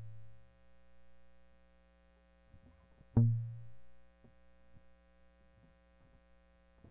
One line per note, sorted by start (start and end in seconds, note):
3.19 3.55 A#2